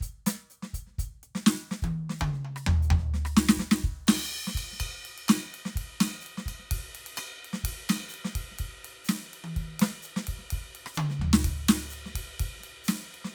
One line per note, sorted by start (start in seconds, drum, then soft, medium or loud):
0.01 closed hi-hat medium
0.01 kick soft
0.27 closed hi-hat loud
0.27 snare medium
0.50 closed hi-hat soft
0.50 hi-hat pedal soft
0.63 snare soft
0.74 closed hi-hat medium
0.74 kick soft
0.87 snare soft
0.93 snare soft
0.99 closed hi-hat medium
0.99 kick soft
1.05 kick soft
1.23 closed hi-hat soft
1.35 snare medium
1.47 snare loud
1.71 snare medium
1.82 kick soft
1.82 hi-hat pedal soft
1.82 high tom loud
1.89 kick soft
2.10 snare medium
2.19 kick soft
2.19 hi-hat pedal soft
2.19 mid tom loud
2.28 kick soft
2.34 snare soft
2.45 mid tom soft
2.56 cross-stick medium
2.67 kick soft
2.67 floor tom loud
2.83 hi-hat pedal soft
2.91 kick soft
2.91 floor tom loud
2.98 kick soft
2.98 snare soft
3.14 snare soft
3.25 cross-stick medium
3.37 snare loud
3.49 snare loud
3.57 kick soft
3.57 snare medium
3.72 snare loud
3.82 kick medium
3.82 hi-hat pedal soft
3.91 kick soft
4.07 snare loud
4.07 crash loud
4.47 snare medium
4.47 hi-hat pedal soft
4.55 kick soft
4.55 ride bell loud
4.63 kick soft
4.73 snare soft
4.78 kick soft
4.78 snare soft
4.78 ride bell loud
5.05 ride medium
5.11 cross-stick soft
5.18 ride medium
5.29 snare loud
5.29 hi-hat pedal medium
5.29 ride bell loud
5.51 hi-hat pedal soft
5.51 ride medium
5.66 snare medium
5.76 kick soft
5.76 hi-hat pedal soft
5.76 ride medium
6.01 snare loud
6.01 ride bell loud
6.21 hi-hat pedal medium
6.27 ride medium
6.38 snare medium
6.46 kick soft
6.46 ride bell medium
6.59 snare soft
6.71 kick soft
6.71 hi-hat pedal soft
6.71 ride loud
6.78 kick soft
6.95 cross-stick soft
6.95 ride medium
7.07 ride medium
7.16 cross-stick medium
7.16 hi-hat pedal medium
7.16 ride bell loud
7.45 ride medium
7.53 snare medium
7.64 kick soft
7.64 hi-hat pedal soft
7.64 ride loud
7.70 kick soft
7.90 snare loud
7.90 ride bell loud
8.09 hi-hat pedal medium
8.14 ride medium
8.25 snare medium
8.35 kick soft
8.35 ride medium
8.43 kick soft
8.51 snare soft
8.55 snare soft
8.55 hi-hat pedal soft
8.55 ride medium
8.60 kick soft
8.85 ride medium
9.05 hi-hat pedal medium
9.09 snare medium
9.09 ride loud
9.34 ride medium
9.44 closed hi-hat soft
9.44 high tom medium
9.57 kick soft
9.57 ride medium
9.63 kick soft
9.80 snare loud
9.80 ride loud
10.03 hi-hat pedal medium
10.03 ride soft
10.17 snare medium
10.27 kick soft
10.27 ride medium
10.39 snare soft
10.46 snare soft
10.46 hi-hat pedal soft
10.51 kick soft
10.51 ride medium
10.59 kick soft
10.59 snare soft
10.75 ride medium
10.86 cross-stick medium
10.95 hi-hat pedal medium
10.95 mid tom loud
11.10 snare soft
11.20 kick soft
11.20 floor tom loud
11.33 snare loud
11.44 kick soft
11.44 hi-hat pedal soft
11.44 ride loud
11.51 kick soft
11.69 snare loud
11.69 ride loud
11.90 hi-hat pedal medium
11.90 ride soft
12.06 snare soft
12.15 kick soft
12.15 ride loud
12.26 snare soft
12.40 kick soft
12.40 ride loud
12.47 kick soft
12.60 snare soft
12.60 ride medium
12.84 hi-hat pedal medium
12.89 snare medium
12.89 ride loud
13.15 ride soft
13.25 snare medium